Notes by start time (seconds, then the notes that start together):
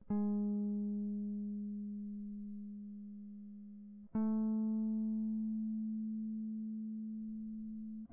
0.12 G#3
4.16 A3